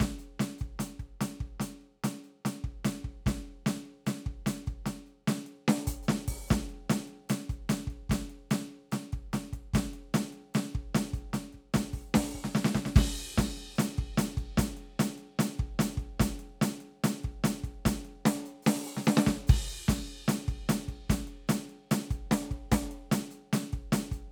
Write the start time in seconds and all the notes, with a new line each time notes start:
0.01 closed hi-hat, kick, snare
0.19 closed hi-hat
0.39 closed hi-hat, snare
0.58 closed hi-hat, kick
0.79 closed hi-hat, snare
0.99 kick, closed hi-hat
1.21 closed hi-hat, snare
1.40 kick, closed hi-hat
1.60 closed hi-hat, snare
1.81 closed hi-hat
2.04 closed hi-hat, snare
2.23 closed hi-hat
2.45 closed hi-hat, snare
2.64 kick, closed hi-hat
2.85 closed hi-hat, snare
3.04 kick
3.26 closed hi-hat, kick, snare
3.45 closed hi-hat
3.66 closed hi-hat, snare
3.85 closed hi-hat
4.07 closed hi-hat, snare
4.26 kick, closed hi-hat
4.46 closed hi-hat, snare
4.66 closed hi-hat, kick
4.86 closed hi-hat, snare
5.06 closed hi-hat
5.27 closed hi-hat, snare
5.46 closed hi-hat
5.68 snare
5.87 closed hi-hat, kick
6.03 hi-hat pedal
6.08 snare
6.28 kick, open hi-hat
6.48 closed hi-hat, kick, snare, hi-hat pedal
6.69 closed hi-hat
6.90 closed hi-hat, snare
7.07 closed hi-hat
7.29 closed hi-hat, snare
7.49 closed hi-hat, kick
7.69 closed hi-hat, snare
7.87 kick, closed hi-hat
8.09 closed hi-hat, kick, snare
8.30 closed hi-hat
8.51 closed hi-hat, snare
8.71 closed hi-hat
8.92 closed hi-hat, snare
9.12 kick, closed hi-hat
9.33 closed hi-hat, snare
9.53 kick, closed hi-hat
9.74 closed hi-hat, kick, snare
9.93 closed hi-hat
10.14 closed hi-hat, snare
10.33 closed hi-hat
10.54 closed hi-hat, snare
10.74 kick, closed hi-hat
10.95 closed hi-hat, snare
11.13 closed hi-hat, kick
11.33 closed hi-hat, snare
11.53 kick, closed hi-hat
11.74 open hi-hat, kick, snare
11.93 open hi-hat, kick
12.14 open hi-hat, kick, snare
12.34 open hi-hat, kick
12.44 snare
12.55 snare
12.64 snare
12.73 kick, hi-hat pedal
12.85 snare
12.95 kick, snare, hi-hat pedal, crash
13.15 closed hi-hat
13.36 closed hi-hat, kick, snare, hi-hat pedal
13.58 closed hi-hat
13.75 closed hi-hat, snare, hi-hat pedal
13.98 kick, closed hi-hat
14.17 closed hi-hat, snare
14.37 kick, closed hi-hat
14.57 closed hi-hat, kick, snare
14.77 closed hi-hat
14.99 closed hi-hat, snare
15.18 closed hi-hat
15.39 closed hi-hat, snare
15.59 kick, closed hi-hat
15.79 closed hi-hat, snare
15.97 kick, closed hi-hat
16.20 closed hi-hat, kick, snare
16.39 closed hi-hat
16.61 closed hi-hat, snare
16.80 closed hi-hat
17.04 closed hi-hat, snare
17.24 kick, closed hi-hat
17.44 closed hi-hat, snare
17.64 kick, closed hi-hat
17.85 closed hi-hat, kick, snare
18.05 closed hi-hat
18.25 closed hi-hat, snare
18.45 closed hi-hat
18.62 hi-hat pedal
18.66 open hi-hat, snare
18.86 open hi-hat
18.97 snare
19.04 snare, hi-hat pedal
19.27 kick, snare
19.47 kick, hi-hat pedal, crash
19.53 snare
19.67 closed hi-hat
19.88 closed hi-hat, kick, snare, hi-hat pedal
20.07 closed hi-hat
20.28 closed hi-hat, snare
20.48 kick, closed hi-hat
20.69 closed hi-hat, snare
20.88 kick, closed hi-hat
21.09 closed hi-hat, kick, snare, hi-hat pedal
21.27 closed hi-hat
21.48 closed hi-hat, snare, hi-hat pedal
21.69 closed hi-hat
21.91 closed hi-hat, snare
22.10 closed hi-hat, kick
22.31 closed hi-hat, snare
22.51 kick, closed hi-hat
22.72 open hi-hat, kick, snare, hi-hat pedal
22.91 closed hi-hat
23.11 closed hi-hat, snare
23.31 closed hi-hat
23.53 closed hi-hat, snare
23.73 kick, closed hi-hat
23.92 closed hi-hat, snare
24.11 closed hi-hat, kick